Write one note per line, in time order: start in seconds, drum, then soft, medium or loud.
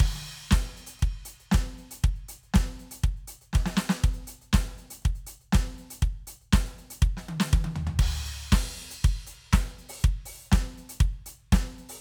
0.01 kick loud
0.01 crash loud
0.16 snare soft
0.27 closed hi-hat medium
0.52 kick loud
0.52 snare loud
0.78 closed hi-hat medium
0.87 closed hi-hat loud
1.00 kick loud
1.00 closed hi-hat soft
1.26 closed hi-hat loud
1.41 closed hi-hat soft
1.52 kick loud
1.52 snare loud
1.66 closed hi-hat soft
1.79 closed hi-hat soft
1.92 closed hi-hat loud
2.04 kick loud
2.04 closed hi-hat soft
2.16 closed hi-hat soft
2.29 closed hi-hat loud
2.44 closed hi-hat soft
2.55 kick loud
2.55 snare loud
2.67 closed hi-hat soft
2.80 closed hi-hat medium
2.92 closed hi-hat loud
3.04 kick loud
3.04 closed hi-hat soft
3.17 closed hi-hat soft
3.26 closed hi-hat loud
3.26 kick soft
3.42 closed hi-hat medium
3.54 kick loud
3.54 snare medium
3.67 snare loud
3.78 snare loud
3.90 snare loud
4.04 closed hi-hat medium
4.04 kick loud
4.14 closed hi-hat medium
4.28 closed hi-hat loud
4.42 closed hi-hat soft
4.54 kick loud
4.54 snare loud
4.76 closed hi-hat medium
4.76 kick soft
4.91 closed hi-hat loud
5.03 kick loud
5.03 closed hi-hat soft
5.16 closed hi-hat soft
5.28 closed hi-hat loud
5.41 closed hi-hat soft
5.53 kick loud
5.53 snare loud
5.66 closed hi-hat soft
5.76 closed hi-hat soft
5.76 kick soft
5.91 closed hi-hat loud
6.03 kick loud
6.03 closed hi-hat soft
6.15 closed hi-hat soft
6.28 closed hi-hat loud
6.42 closed hi-hat soft
6.53 kick loud
6.53 snare loud
6.66 closed hi-hat soft
6.79 closed hi-hat soft
6.91 closed hi-hat loud
7.03 kick loud
7.03 closed hi-hat soft
7.18 snare medium
7.29 high tom loud
7.41 snare loud
7.54 kick loud
7.54 high tom loud
7.65 high tom loud
7.77 floor tom loud
7.88 floor tom loud
8.00 kick loud
8.00 crash loud
8.14 closed hi-hat soft
8.26 closed hi-hat medium
8.53 kick loud
8.53 snare loud
8.53 crash loud
8.78 closed hi-hat soft
8.91 closed hi-hat loud
9.05 closed hi-hat medium
9.05 kick loud
9.16 closed hi-hat soft
9.28 closed hi-hat loud
9.53 kick loud
9.53 snare loud
9.53 hi-hat pedal soft
9.65 closed hi-hat soft
9.79 closed hi-hat soft
9.90 open hi-hat loud
10.01 kick loud
10.01 closed hi-hat soft
10.01 hi-hat pedal soft
10.12 closed hi-hat soft
10.26 open hi-hat loud
10.42 open hi-hat soft
10.46 hi-hat pedal soft
10.53 kick loud
10.53 snare loud
10.78 closed hi-hat medium
10.90 closed hi-hat loud
11.01 kick loud
11.01 closed hi-hat soft
11.14 closed hi-hat soft
11.27 closed hi-hat loud
11.41 closed hi-hat soft
11.53 kick loud
11.53 snare loud
11.66 closed hi-hat soft
11.79 closed hi-hat medium
11.90 open hi-hat loud
11.97 hi-hat pedal soft